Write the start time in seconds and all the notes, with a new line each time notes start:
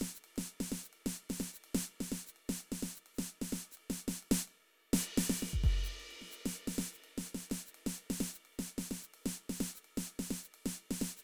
0.01 snare, ride
0.14 hi-hat pedal
0.24 ride
0.36 snare, ride
0.48 ride
0.60 snare
0.70 snare, ride
0.81 hi-hat pedal, ride
0.93 ride
1.06 snare
1.16 ride
1.29 snare, ride
1.40 snare, ride
1.53 hi-hat pedal
1.64 ride
1.75 snare, ride
1.88 ride
2.00 snare
2.12 snare, ride
2.25 hi-hat pedal, ride
2.36 ride
2.47 snare, hi-hat pedal
2.60 ride
2.72 snare, ride
2.82 snare, ride
2.94 hi-hat pedal
3.06 ride
3.14 hi-hat pedal
3.18 snare, ride
3.30 ride
3.42 snare
3.52 snare, ride
3.65 ride
3.71 hi-hat pedal
3.77 ride
3.90 snare
4.00 ride
4.08 snare, ride
4.23 ride
4.31 snare
4.48 ride
4.93 snare, ride
5.17 snare, ride
5.29 snare
5.38 hi-hat pedal
5.42 snare
5.53 kick
5.64 kick, ride
5.83 hi-hat pedal
5.88 ride
6.00 ride
6.11 ride
6.21 snare
6.31 hi-hat pedal, ride
6.45 snare, ride
6.56 ride
6.67 snare
6.78 snare, ride
6.92 hi-hat pedal, ride
7.04 ride
7.18 snare
7.27 ride
7.34 snare
7.40 ride
7.50 snare, ride
7.66 hi-hat pedal
7.74 ride
7.86 snare, ride
7.98 ride
8.10 snare
8.20 snare, ride
8.33 hi-hat pedal, ride
8.45 ride
8.52 hi-hat pedal
8.59 snare
8.68 ride
8.78 snare, ride
8.91 snare
9.01 hi-hat pedal
9.14 ride
9.21 hi-hat pedal
9.26 snare, ride
9.38 ride
9.49 snare
9.60 snare, ride
9.73 hi-hat pedal, ride
9.84 ride
9.95 snare, hi-hat pedal
10.07 ride
10.19 snare, ride
10.30 snare, ride
10.42 hi-hat pedal
10.54 ride
10.61 hi-hat pedal
10.66 snare, ride
10.78 ride
10.91 snare
11.01 snare, ride
11.13 hi-hat pedal, ride